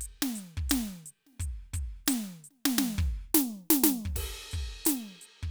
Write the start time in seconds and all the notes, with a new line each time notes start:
0.01 closed hi-hat
0.22 snare
0.35 closed hi-hat
0.57 kick
0.70 open hi-hat, snare
1.06 closed hi-hat
1.27 snare
1.33 snare
1.36 snare
1.40 closed hi-hat, kick, snare
1.74 closed hi-hat, kick
2.06 closed hi-hat, snare, hi-hat pedal
2.44 closed hi-hat
2.51 snare
2.66 snare
2.78 snare
2.98 kick
3.35 snare
3.70 snare
3.84 snare
4.05 kick
4.16 kick, crash
4.51 open hi-hat, kick
4.85 closed hi-hat, snare
5.21 closed hi-hat
5.43 kick